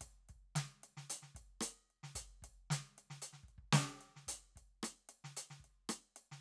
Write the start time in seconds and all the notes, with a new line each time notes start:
0.01 kick, closed hi-hat
0.29 kick, closed hi-hat
0.56 snare, closed hi-hat
0.84 closed hi-hat
0.97 snare
1.10 closed hi-hat
1.23 snare
1.35 kick, closed hi-hat
1.61 closed hi-hat, cross-stick
1.90 closed hi-hat
2.03 snare
2.15 closed hi-hat, kick
2.43 kick, closed hi-hat
2.71 closed hi-hat, snare
2.98 closed hi-hat
3.10 snare
3.22 closed hi-hat
3.33 snare
3.44 kick
3.49 closed hi-hat
3.58 kick
3.73 closed hi-hat, snare
4.01 closed hi-hat
4.16 snare
4.28 closed hi-hat, kick
4.56 kick, closed hi-hat
4.83 closed hi-hat, cross-stick
5.09 closed hi-hat
5.24 snare
5.37 closed hi-hat
5.50 snare
5.60 kick
5.64 closed hi-hat
5.89 closed hi-hat, cross-stick
6.16 closed hi-hat
6.32 snare